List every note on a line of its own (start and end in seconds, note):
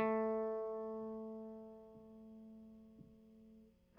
0.00 3.75 A3